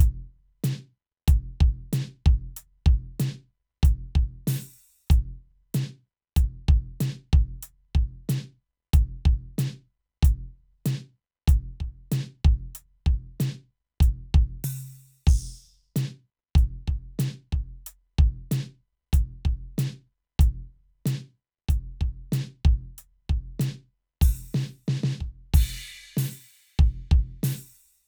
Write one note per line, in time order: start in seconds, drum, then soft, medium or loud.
0.01 closed hi-hat loud
0.01 kick loud
0.66 closed hi-hat loud
0.66 snare loud
1.30 closed hi-hat loud
1.30 kick loud
1.63 kick loud
1.95 closed hi-hat loud
1.95 snare loud
2.28 kick loud
2.59 closed hi-hat loud
2.88 kick loud
3.22 closed hi-hat loud
3.22 snare loud
3.85 closed hi-hat loud
3.85 kick loud
4.17 kick loud
4.49 open hi-hat loud
4.49 snare loud
5.09 kick loud
5.09 hi-hat pedal soft
5.13 closed hi-hat loud
5.76 closed hi-hat loud
5.76 snare loud
6.38 closed hi-hat loud
6.38 kick loud
6.70 kick loud
7.03 closed hi-hat loud
7.03 snare loud
7.35 kick loud
7.65 closed hi-hat loud
7.97 kick loud
8.31 closed hi-hat loud
8.31 snare loud
8.95 closed hi-hat loud
8.95 kick loud
9.27 kick loud
9.60 closed hi-hat loud
9.60 snare loud
10.25 closed hi-hat loud
10.25 kick loud
10.88 closed hi-hat loud
10.88 snare loud
11.50 closed hi-hat loud
11.50 kick loud
11.82 kick medium
12.14 closed hi-hat loud
12.14 snare loud
12.47 kick loud
12.77 closed hi-hat loud
13.08 kick loud
13.42 closed hi-hat loud
13.42 snare loud
14.02 closed hi-hat loud
14.02 kick loud
14.36 kick loud
14.66 open hi-hat loud
14.66 floor tom loud
15.28 kick loud
15.28 hi-hat pedal soft
15.28 crash loud
15.98 closed hi-hat loud
15.98 snare loud
16.57 closed hi-hat medium
16.57 kick loud
16.90 kick medium
17.21 closed hi-hat loud
17.21 snare loud
17.55 kick medium
17.88 closed hi-hat loud
18.21 kick loud
18.53 closed hi-hat loud
18.53 snare loud
19.15 closed hi-hat loud
19.15 kick loud
19.47 kick medium
19.80 closed hi-hat loud
19.80 snare loud
20.41 closed hi-hat loud
20.41 kick loud
21.08 closed hi-hat loud
21.08 snare loud
21.18 snare soft
21.71 closed hi-hat medium
21.71 kick loud
22.03 kick medium
22.34 closed hi-hat loud
22.34 snare loud
22.67 kick loud
23.00 closed hi-hat medium
23.32 kick medium
23.62 closed hi-hat loud
23.62 snare loud
24.24 open hi-hat loud
24.24 kick loud
24.57 snare loud
24.88 snare loud
24.88 hi-hat pedal soft
25.06 snare loud
25.23 kick medium
25.56 open hi-hat loud
25.56 kick loud
25.56 crash loud
26.19 open hi-hat loud
26.19 snare loud
26.81 kick loud
27.13 kick loud
27.45 open hi-hat loud
27.45 snare loud